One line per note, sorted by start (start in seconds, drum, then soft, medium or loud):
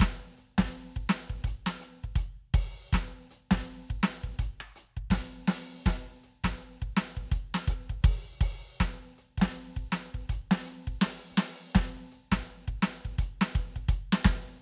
0.01 closed hi-hat loud
0.01 kick loud
0.01 snare loud
0.01 hi-hat pedal soft
0.24 closed hi-hat soft
0.39 closed hi-hat medium
0.59 kick medium
0.59 snare loud
0.59 closed hi-hat medium
0.75 closed hi-hat medium
0.97 kick medium
0.97 closed hi-hat soft
1.10 closed hi-hat loud
1.10 snare loud
1.10 hi-hat pedal soft
1.31 kick soft
1.31 closed hi-hat soft
1.45 closed hi-hat loud
1.45 kick medium
1.67 snare loud
1.82 closed hi-hat loud
2.05 kick soft
2.05 closed hi-hat soft
2.17 open hi-hat loud
2.17 kick medium
2.55 open hi-hat loud
2.55 kick loud
2.94 open hi-hat loud
2.94 kick medium
2.94 snare loud
2.94 hi-hat pedal soft
3.17 closed hi-hat soft
3.32 closed hi-hat loud
3.52 kick medium
3.52 snare loud
3.52 closed hi-hat medium
3.68 closed hi-hat medium
3.90 kick medium
3.90 closed hi-hat soft
4.04 closed hi-hat loud
4.04 snare loud
4.25 kick soft
4.25 closed hi-hat soft
4.40 closed hi-hat loud
4.40 kick medium
4.61 cross-stick medium
4.77 closed hi-hat loud
4.98 kick soft
5.11 open hi-hat loud
5.11 kick medium
5.11 snare loud
5.11 hi-hat pedal soft
5.48 open hi-hat loud
5.48 kick soft
5.48 snare loud
5.87 open hi-hat loud
5.87 kick medium
5.87 snare loud
5.87 hi-hat pedal soft
6.09 closed hi-hat soft
6.24 closed hi-hat medium
6.45 kick medium
6.45 snare loud
6.45 closed hi-hat medium
6.61 closed hi-hat medium
6.83 kick medium
6.98 closed hi-hat loud
6.98 snare loud
7.18 kick soft
7.33 closed hi-hat loud
7.33 kick medium
7.55 snare loud
7.69 open hi-hat loud
7.69 kick medium
7.73 hi-hat pedal medium
7.91 kick soft
7.91 closed hi-hat medium
8.03 open hi-hat loud
8.03 kick loud
8.03 hi-hat pedal soft
8.42 open hi-hat loud
8.42 kick medium
8.81 open hi-hat loud
8.81 kick medium
8.81 snare loud
8.81 hi-hat pedal soft
9.03 closed hi-hat medium
9.19 closed hi-hat medium
9.39 kick medium
9.39 snare loud
9.39 closed hi-hat loud
9.58 closed hi-hat medium
9.77 kick medium
9.93 closed hi-hat loud
9.93 snare loud
10.15 kick soft
10.30 closed hi-hat loud
10.30 kick medium
10.52 snare loud
10.67 closed hi-hat loud
10.88 kick medium
11.02 open hi-hat loud
11.02 snare loud
11.32 kick soft
11.38 open hi-hat loud
11.38 snare loud
11.76 open hi-hat loud
11.76 kick medium
11.76 snare loud
11.76 hi-hat pedal medium
11.98 closed hi-hat medium
12.13 closed hi-hat medium
12.33 kick medium
12.33 snare loud
12.33 closed hi-hat medium
12.49 closed hi-hat medium
12.69 kick medium
12.69 closed hi-hat soft
12.83 closed hi-hat loud
12.83 snare loud
13.06 kick soft
13.06 closed hi-hat soft
13.20 closed hi-hat loud
13.20 kick medium
13.42 snare loud
13.55 closed hi-hat loud
13.55 kick medium
13.77 kick soft
13.77 closed hi-hat medium
13.90 closed hi-hat loud
13.90 kick medium
13.90 hi-hat pedal medium
14.13 snare loud
14.26 kick loud
14.26 snare loud